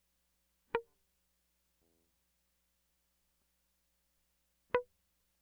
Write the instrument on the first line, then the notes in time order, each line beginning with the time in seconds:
electric guitar
0.75 A#4
4.75 B4